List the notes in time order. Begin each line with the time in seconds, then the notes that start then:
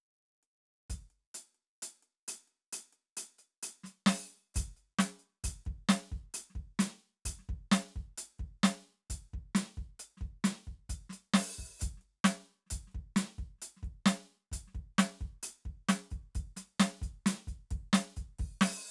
0.43 closed hi-hat
0.90 closed hi-hat, kick, snare
1.10 closed hi-hat
1.34 closed hi-hat
1.54 closed hi-hat
1.82 closed hi-hat
2.02 closed hi-hat
2.28 closed hi-hat
2.47 closed hi-hat
2.73 closed hi-hat
2.93 closed hi-hat
3.17 closed hi-hat
3.38 closed hi-hat
3.63 closed hi-hat
3.84 closed hi-hat, snare
4.06 open hi-hat, snare
4.54 closed hi-hat, kick, hi-hat pedal
4.76 closed hi-hat
4.99 closed hi-hat, snare
5.19 closed hi-hat
5.44 closed hi-hat, kick
5.65 kick, closed hi-hat
5.89 closed hi-hat, snare
6.11 kick
6.34 closed hi-hat
6.50 snare
6.55 kick, closed hi-hat
6.79 closed hi-hat, snare
7.00 closed hi-hat
7.25 closed hi-hat, kick
7.39 snare
7.49 kick
7.71 closed hi-hat, snare
7.96 kick
8.18 closed hi-hat
8.39 kick, closed hi-hat
8.63 closed hi-hat, snare
9.10 closed hi-hat, kick
9.33 kick
9.55 closed hi-hat, snare
9.76 kick, closed hi-hat
9.99 closed hi-hat
10.17 kick, snare
10.21 closed hi-hat
10.44 closed hi-hat, snare
10.65 kick, closed hi-hat
10.89 closed hi-hat, kick
11.09 closed hi-hat, snare
11.34 open hi-hat, snare
11.58 kick
11.79 closed hi-hat, kick, hi-hat pedal
11.97 snare
12.01 closed hi-hat
12.24 closed hi-hat, snare
12.46 closed hi-hat
12.66 closed hi-hat, snare
12.71 kick
12.87 snare
12.91 kick, closed hi-hat
13.16 closed hi-hat, snare
13.38 kick, closed hi-hat
13.58 closed hi-hat, snare
13.77 snare
13.83 kick, closed hi-hat
14.06 closed hi-hat, snare
14.52 closed hi-hat, kick
14.67 snare
14.74 kick, closed hi-hat
14.98 closed hi-hat, snare
15.21 kick, closed hi-hat
15.43 closed hi-hat
15.65 kick, closed hi-hat
15.89 closed hi-hat, snare
16.10 closed hi-hat, kick
16.35 closed hi-hat, kick
16.56 closed hi-hat, snare
16.80 closed hi-hat, snare
17.01 closed hi-hat, kick
17.26 closed hi-hat, snare
17.47 closed hi-hat, kick
17.71 kick, closed hi-hat
17.93 closed hi-hat, snare
18.16 closed hi-hat, kick, snare
18.39 kick, open hi-hat
18.61 open hi-hat, snare
18.67 snare
18.79 snare